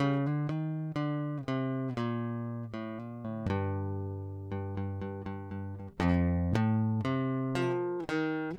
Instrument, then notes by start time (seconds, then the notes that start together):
acoustic guitar
0.01 C#3 G3
0.28 D3
0.50 D#3
0.97 D3
1.49 C3
1.98 A#2
2.75 A2
3.01 A#2
3.26 A2
3.48 G2
4.53 G2
4.79 G2
5.28 G2
5.53 G2
5.81 G2
6.01 F2
6.57 A2
7.02 F#2 C3
7.56 F3
8.10 D#3